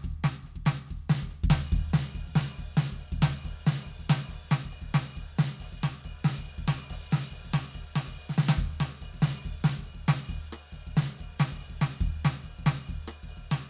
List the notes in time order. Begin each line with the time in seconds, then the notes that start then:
0.01 kick, snare, percussion
0.24 snare, percussion
0.43 kick, snare, percussion
0.56 kick
0.66 snare, percussion
0.86 snare, percussion
0.91 kick
1.10 snare, percussion
1.23 kick, snare
1.31 percussion
1.44 kick
1.51 snare, percussion
1.72 kick, snare, percussion
1.94 snare, percussion
2.14 kick, snare, percussion
2.27 kick
2.36 snare, percussion
2.59 kick
2.77 snare, percussion
2.93 kick
2.98 snare, percussion
3.13 kick
3.22 snare, percussion
3.45 kick, snare, percussion
3.67 snare, percussion
3.87 kick, snare
4.00 kick
4.10 snare, percussion
4.29 kick, snare, percussion
4.51 snare, percussion
4.65 kick
4.71 snare, percussion
4.82 kick
4.95 snare, percussion
5.17 kick, snare, percussion
5.39 snare, percussion
5.61 kick, percussion
5.65 snare
5.73 kick
5.83 snare, percussion
6.05 kick, percussion
6.25 snare, percussion
6.39 kick
6.46 snare, percussion
6.59 kick
6.68 snare, percussion
6.90 kick, percussion
7.12 snare, percussion
7.32 kick, percussion
7.45 kick
7.54 snare, percussion
7.75 kick, percussion
7.96 snare, percussion
8.08 kick
8.19 percussion
8.30 snare
8.38 snare
8.49 snare
8.58 kick, percussion
8.81 snare, percussion
9.00 kick, snare, percussion
9.14 kick
9.23 snare, percussion
9.42 kick, snare, percussion
9.65 snare, percussion
9.79 kick
9.86 percussion
9.95 kick
10.09 snare, percussion
10.30 kick, percussion
10.53 cross-stick, percussion
10.73 kick, snare, percussion
10.87 kick
10.97 snare, percussion
11.16 snare, percussion
11.21 kick
11.40 snare, percussion
11.53 kick, snare
11.61 percussion
11.70 kick
11.82 snare, percussion
12.01 kick, snare, percussion
12.25 snare, percussion
12.45 kick, percussion
12.59 kick
12.67 snare, percussion
12.87 kick, percussion
13.08 cross-stick, percussion
13.24 kick
13.29 percussion
13.38 kick
13.51 snare, percussion